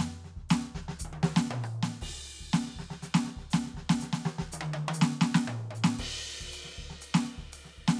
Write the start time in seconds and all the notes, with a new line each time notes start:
0.01 snare, hi-hat pedal
0.26 snare
0.38 kick, snare
0.51 snare, hi-hat pedal
0.65 snare
0.76 kick, snare
0.82 kick
0.85 kick
0.90 snare
1.01 kick, hi-hat pedal
1.06 kick, high tom
1.13 kick, high tom
1.25 snare
1.38 snare
1.52 mid tom
1.65 cross-stick
1.84 snare
2.03 kick, hi-hat pedal, crash
2.09 kick
2.12 kick
2.42 kick
2.55 snare, hi-hat pedal
2.68 snare
2.77 kick, snare
2.92 snare
3.04 snare, hi-hat pedal
3.16 snare
3.28 snare
3.38 kick, snare
3.46 kick
3.52 snare, hi-hat pedal
3.67 snare
3.76 kick, snare
3.91 snare
4.02 snare, hi-hat pedal
4.14 snare
4.27 snare
4.40 kick, snare
4.50 kick, hi-hat pedal
4.55 high tom
4.62 high tom
4.75 high tom
4.90 high tom
4.95 hi-hat pedal
5.03 snare
5.22 snare
5.36 snare
5.49 mid tom
5.72 mid tom
5.76 hi-hat pedal
5.85 snare
6.00 kick, ride
6.07 kick
6.12 kick
6.20 cross-stick, hi-hat pedal
6.34 snare
6.39 kick, snare
6.53 hi-hat pedal, ride bell
6.66 snare
6.78 kick, ride
6.85 kick
6.91 snare
7.02 hi-hat pedal, ride
7.16 snare
7.28 ride
7.39 kick, snare
7.54 hi-hat pedal, ride
7.66 snare
7.79 kick, ride
7.89 snare